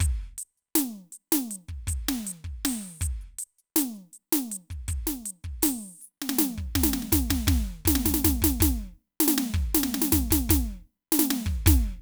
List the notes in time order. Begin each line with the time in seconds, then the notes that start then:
0.01 closed hi-hat, kick
0.39 closed hi-hat
0.58 closed hi-hat
0.76 closed hi-hat, snare
1.13 closed hi-hat
1.33 snare
1.51 closed hi-hat
1.69 kick, closed hi-hat
1.88 closed hi-hat, kick
2.09 snare
2.27 closed hi-hat
2.45 kick, closed hi-hat
2.65 open hi-hat, snare
3.01 closed hi-hat, kick, hi-hat pedal
3.22 closed hi-hat
3.39 closed hi-hat
3.59 closed hi-hat
3.77 closed hi-hat, snare
3.95 closed hi-hat
4.14 closed hi-hat
4.33 snare
4.52 closed hi-hat
4.71 kick, closed hi-hat
4.89 closed hi-hat, kick
5.08 snare
5.26 closed hi-hat
5.44 kick, closed hi-hat
5.63 open hi-hat, snare
6.02 hi-hat pedal
6.22 snare
6.30 snare
6.37 snare, hi-hat pedal
6.58 kick
6.76 kick, snare
6.84 snare
6.94 snare
7.03 snare
7.13 kick, snare
7.30 kick, snare
7.48 kick, snare
7.86 kick, snare
7.96 snare
8.06 kick, snare
8.15 snare
8.25 kick, snare
8.43 kick, snare
8.61 kick, snare
9.21 snare
9.28 snare
9.38 snare
9.54 kick
9.75 snare
9.81 kick, snare
9.95 snare
10.02 snare
10.13 kick, snare
10.31 kick, snare
10.50 kick, snare
11.13 snare
11.20 snare
11.31 snare
11.47 kick
11.67 kick, snare